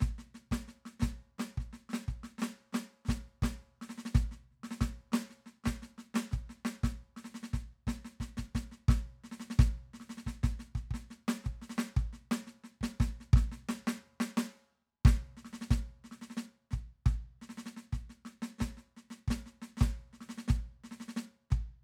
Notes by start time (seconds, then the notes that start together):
0.01 kick, snare
0.19 snare
0.35 snare
0.52 kick, snare
0.68 snare
0.86 snare
1.00 snare
1.02 kick, snare
1.39 snare
1.58 kick, snare
1.73 snare
1.90 snare
1.94 snare
2.08 kick, snare
2.24 snare
2.39 snare
2.42 snare
2.73 snare
2.75 snare
3.06 kick, snare
3.10 snare
3.43 kick, snare
3.82 snare
3.90 snare
3.98 snare
4.06 snare
4.15 kick, snare
4.32 snare
4.51 snare
4.64 snare
4.71 snare
4.81 kick, snare
5.12 snare
5.30 snare
5.46 snare
5.64 snare
5.66 kick, snare
5.83 snare
5.98 snare
6.15 snare
6.32 kick, snare
6.50 snare
6.65 snare
6.84 kick, snare
7.17 snare
7.25 snare
7.35 snare
7.43 snare
7.54 kick, snare
7.87 kick, snare
8.05 snare
8.21 kick, snare
8.37 kick, snare
8.55 kick, snare
8.72 snare
8.89 kick, snare
9.24 snare
9.32 snare
9.40 snare
9.50 snare
9.59 kick, snare
9.94 snare
10.00 snare
10.10 snare
10.18 snare
10.27 kick, snare
10.44 kick, snare
10.60 snare
10.76 kick, snare
10.91 kick, snare
11.11 snare
11.29 snare
11.44 kick, snare
11.62 snare
11.70 snare
11.79 snare
11.97 kick, snare
12.13 snare
12.32 snare
12.47 snare
12.64 snare
12.81 kick, snare
13.00 kick, snare
13.21 snare
13.34 kick, snare
13.52 snare
13.69 snare
13.88 snare
14.21 snare
14.38 snare
15.05 kick, snare
15.37 snare
15.45 snare
15.53 snare
15.62 snare
15.71 kick, snare
16.05 snare
16.12 snare
16.30 snare
16.37 snare
16.71 kick, snare
17.06 kick, snare
17.42 snare
17.50 snare
17.58 snare
17.66 snare
17.77 snare
17.93 kick, snare
18.10 snare
18.25 snare
18.42 snare
18.59 snare
18.61 kick, snare
18.78 snare
18.97 snare
19.11 snare
19.28 kick, snare
19.31 snare
19.46 snare
19.62 snare
19.77 snare
19.81 kick, snare
20.13 snare
20.21 snare
20.30 snare
20.38 snare
20.48 kick, snare
20.84 snare
20.91 snare
21.00 snare
21.09 snare
21.17 snare
21.51 kick, snare